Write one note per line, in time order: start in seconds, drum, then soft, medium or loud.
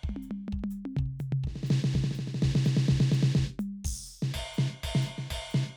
0.04 kick soft
0.10 kick soft
0.10 mid tom medium
0.17 high tom medium
0.23 hi-hat pedal medium
0.32 mid tom loud
0.49 mid tom loud
0.53 kick soft
0.60 kick soft
0.65 mid tom loud
0.71 hi-hat pedal medium
0.86 high tom loud
0.97 kick soft
0.97 floor tom loud
1.06 kick soft
1.20 floor tom loud
1.20 hi-hat pedal medium
1.33 floor tom loud
1.45 kick soft
1.45 snare medium
1.51 kick soft
1.56 snare medium
1.64 snare medium
1.64 hi-hat pedal medium
1.71 snare loud
1.85 snare loud
1.95 kick soft
1.95 snare loud
2.01 kick soft
2.01 snare medium
2.12 snare medium
2.12 hi-hat pedal medium
2.20 snare medium
2.28 snare medium
2.35 snare medium
2.43 kick soft
2.43 snare loud
2.52 kick soft
2.56 snare loud
2.66 snare loud
2.66 hi-hat pedal medium
2.78 snare loud
2.89 kick soft
2.89 snare loud
3.01 snare loud
3.13 snare loud
3.13 hi-hat pedal medium
3.24 snare loud
3.36 kick soft
3.36 snare loud
3.45 kick soft
3.60 hi-hat pedal medium
3.60 mid tom loud
3.85 kick medium
3.85 crash loud
3.97 kick soft
4.07 hi-hat pedal medium
4.23 snare medium
4.35 kick soft
4.35 ride bell loud
4.42 kick soft
4.55 hi-hat pedal medium
4.59 snare loud
4.84 kick soft
4.84 ride bell loud
4.91 kick soft
4.96 snare loud
5.03 hi-hat pedal medium
5.07 ride medium
5.19 snare medium
5.31 kick soft
5.31 ride bell loud
5.38 kick soft
5.51 hi-hat pedal medium
5.55 snare loud